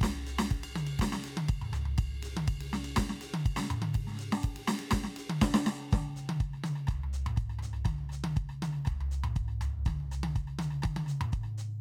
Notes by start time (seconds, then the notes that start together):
0.01 kick, snare, hi-hat pedal, ride
0.27 hi-hat pedal, ride bell
0.39 snare
0.51 kick, hi-hat pedal, ride
0.64 ride bell
0.76 hi-hat pedal, high tom
0.87 ride bell
0.99 kick, snare, hi-hat pedal, ride
1.12 snare
1.24 hi-hat pedal, ride
1.37 high tom
1.49 kick, hi-hat pedal, ride bell
1.62 mid tom
1.70 kick, floor tom, hi-hat pedal
1.86 floor tom
1.98 kick, hi-hat pedal, ride bell
2.23 hi-hat pedal, ride
2.37 high tom
2.47 kick, hi-hat pedal, ride bell
2.61 ride
2.73 snare, hi-hat pedal
2.85 ride bell
2.96 kick, snare, hi-hat pedal, ride bell
3.10 snare
3.21 hi-hat pedal, ride
3.34 high tom
3.45 kick, hi-hat pedal, ride bell
3.57 snare
3.63 snare
3.70 hi-hat pedal, mid tom
3.82 high tom
3.94 kick, hi-hat pedal, ride
4.07 snare
4.12 snare
4.15 snare
4.19 hi-hat pedal, ride
4.33 snare
4.44 kick, hi-hat pedal, ride
4.56 ride
4.68 snare, hi-hat pedal
4.79 ride
4.91 kick, snare, hi-hat pedal, ride
5.04 snare
5.17 hi-hat pedal, ride
5.30 high tom
5.41 kick, snare, hi-hat pedal
5.54 snare
5.65 snare, hi-hat pedal
5.91 kick, snare, hi-hat pedal, high tom
6.16 hi-hat pedal
6.29 high tom
6.40 kick, cross-stick, hi-hat pedal
6.54 cross-stick
6.64 hi-hat pedal, high tom
6.76 cross-stick
6.87 kick, cross-stick, hi-hat pedal
6.91 cross-stick, floor tom
7.04 floor tom
7.13 hi-hat pedal
7.26 mid tom
7.37 kick, cross-stick, hi-hat pedal
7.50 cross-stick
7.59 floor tom, hi-hat pedal
7.73 cross-stick
7.85 kick, cross-stick, hi-hat pedal, high tom
7.99 high tom
8.01 high tom
8.09 cross-stick, hi-hat pedal
8.24 high tom
8.36 kick, cross-stick, hi-hat pedal
8.49 cross-stick
8.62 hi-hat pedal, high tom
8.73 cross-stick
8.85 kick, cross-stick, floor tom, hi-hat pedal
9.01 floor tom
9.11 cross-stick, hi-hat pedal
9.24 mid tom
9.36 kick, cross-stick, hi-hat pedal
9.48 cross-stick
9.61 floor tom, hi-hat pedal
9.85 kick, cross-stick, hi-hat pedal, high tom
9.96 high tom
10.00 high tom
10.04 high tom
10.12 cross-stick, hi-hat pedal
10.23 high tom
10.36 kick, cross-stick, hi-hat pedal
10.48 cross-stick
10.59 hi-hat pedal, high tom
10.71 cross-stick
10.83 kick, cross-stick, hi-hat pedal, high tom
10.97 high tom
11.06 cross-stick, hi-hat pedal
11.21 mid tom
11.32 kick, cross-stick, hi-hat pedal
11.44 cross-stick
11.58 hi-hat pedal